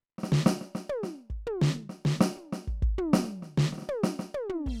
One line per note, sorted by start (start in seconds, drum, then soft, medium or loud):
0.18 snare soft
0.23 snare medium
0.32 snare loud
0.46 snare loud
0.61 snare soft
0.75 snare medium
0.89 high tom loud
1.03 snare medium
1.30 kick soft
1.46 mid tom loud
1.61 snare loud
1.89 snare soft
2.05 snare loud
2.21 snare loud
2.36 floor tom soft
2.52 snare medium
2.67 kick soft
2.82 kick medium
2.98 floor tom loud
3.13 snare loud
3.24 snare soft
3.42 snare soft
3.58 snare loud
3.72 snare soft
3.78 snare soft
3.82 snare soft
3.88 high tom loud
4.04 snare loud
4.19 snare medium
4.34 high tom loud
4.49 floor tom loud
4.66 kick soft
4.66 crash soft